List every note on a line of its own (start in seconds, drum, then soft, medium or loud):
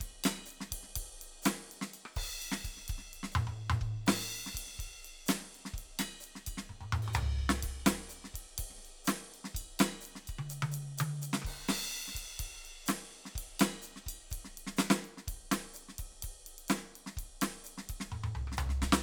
0.01 kick soft
0.01 ride medium
0.25 snare loud
0.25 ride bell loud
0.46 hi-hat pedal medium
0.51 ride soft
0.61 snare medium
0.72 kick soft
0.72 ride loud
0.84 snare soft
0.89 snare soft
0.92 snare soft
0.95 kick soft
0.95 snare soft
0.95 ride loud
1.05 kick soft
1.22 ride medium
1.43 snare loud
1.43 hi-hat pedal medium
1.43 ride loud
1.72 ride medium
1.82 snare medium
1.94 ride bell medium
2.06 cross-stick medium
2.14 kick medium
2.14 hi-hat pedal soft
2.14 crash loud
2.22 kick soft
2.30 kick soft
2.42 ride bell medium
2.52 snare medium
2.65 kick soft
2.65 ride bell medium
2.77 snare soft
2.89 kick medium
2.89 ride medium
2.96 kick soft
2.96 snare soft
3.14 ride medium
3.24 snare medium
3.32 hi-hat pedal soft
3.32 mid tom loud
3.48 mid tom medium
3.70 mid tom loud
3.82 kick soft
3.88 kick soft
3.92 kick soft
4.03 kick soft
4.03 crash loud
4.09 snare loud
4.28 hi-hat pedal soft
4.47 snare medium
4.54 kick soft
4.54 hi-hat pedal soft
4.58 ride loud
4.67 snare soft
4.72 snare soft
4.75 snare soft
4.78 kick soft
4.78 snare soft
4.78 ride medium
4.85 kick soft
4.87 kick soft
5.05 ride medium
5.27 snare loud
5.27 hi-hat pedal medium
5.27 ride loud
5.39 snare soft
5.55 ride soft
5.66 snare medium
5.74 kick soft
5.74 hi-hat pedal soft
5.79 kick soft
5.79 ride medium
6.00 snare medium
6.00 ride bell loud
6.21 hi-hat pedal medium
6.21 ride medium
6.36 snare soft
6.47 kick soft
6.47 ride bell medium
6.56 kick soft
6.56 snare medium
6.70 kick soft
6.70 mid tom medium
6.81 mid tom medium
6.93 mid tom loud
7.03 ride medium
7.08 mid tom medium
7.14 hi-hat pedal medium
7.14 floor tom loud
7.27 cross-stick soft
7.39 kick soft
7.50 snare loud
7.63 kick soft
7.63 ride loud
7.70 kick soft
7.87 snare loud
7.87 ride loud
8.10 hi-hat pedal medium
8.10 ride soft
8.25 snare soft
8.35 kick soft
8.35 ride medium
8.59 kick soft
8.59 ride loud
8.71 snare soft
8.75 snare soft
8.78 snare soft
8.86 ride soft
9.05 snare loud
9.05 hi-hat pedal medium
9.05 ride loud
9.35 ride soft
9.45 snare medium
9.55 kick soft
9.55 hi-hat pedal soft
9.55 ride bell medium
9.61 kick soft
9.80 snare loud
9.80 ride bell loud
10.01 hi-hat pedal medium
10.06 ride medium
10.16 snare soft
10.28 kick soft
10.28 ride bell medium
10.39 high tom loud
10.50 hi-hat pedal medium
10.50 ride medium
10.63 high tom loud
10.72 hi-hat pedal medium
10.72 ride medium
10.98 hi-hat pedal medium
10.98 high tom loud
10.98 ride loud
11.22 hi-hat pedal medium
11.22 ride medium
11.34 snare loud
11.43 kick soft
11.43 cross-stick medium
11.47 hi-hat pedal soft
11.47 crash medium
11.69 snare loud
11.69 crash loud
12.08 snare soft
12.15 kick soft
12.15 hi-hat pedal soft
12.15 ride medium
12.40 kick soft
12.40 ride loud
12.48 kick soft
12.66 ride soft
12.87 snare medium
12.87 hi-hat pedal medium
12.87 ride loud
13.15 ride soft
13.26 snare soft
13.36 kick soft
13.36 hi-hat pedal soft
13.36 ride loud
13.60 snare loud
13.60 ride bell loud
13.83 hi-hat pedal medium
13.87 ride soft
13.97 snare soft
14.07 kick soft
14.07 ride bell medium
14.31 kick soft
14.31 hi-hat pedal soft
14.31 ride medium
14.38 kick soft
14.45 snare soft
14.58 ride medium
14.67 snare medium
14.77 snare loud
14.77 hi-hat pedal medium
14.91 snare loud
15.05 ride soft
15.18 snare soft
15.28 kick soft
15.28 hi-hat pedal soft
15.28 ride medium
15.35 kick soft
15.37 kick soft
15.52 snare loud
15.52 ride loud
15.74 hi-hat pedal medium
15.74 ride medium
15.89 snare soft
15.99 kick soft
15.99 ride medium
16.12 snare soft
16.18 snare soft
16.23 kick soft
16.23 hi-hat pedal soft
16.23 ride loud
16.47 ride medium
16.59 ride medium
16.69 snare loud
16.69 hi-hat pedal medium
16.78 snare soft
16.96 ride medium
17.07 snare medium
17.18 kick soft
17.18 hi-hat pedal soft
17.18 ride medium
17.24 kick soft
17.42 snare medium
17.42 ride loud
17.64 hi-hat pedal medium
17.64 ride medium
17.78 snare medium
17.90 kick soft
17.90 ride medium
18.01 snare medium
18.10 kick soft
18.10 mid tom medium
18.24 mid tom loud
18.36 floor tom medium
18.48 cross-stick soft
18.52 snare medium
18.58 hi-hat pedal medium
18.58 floor tom loud
18.70 snare soft
18.83 kick soft
18.83 snare medium
18.93 snare loud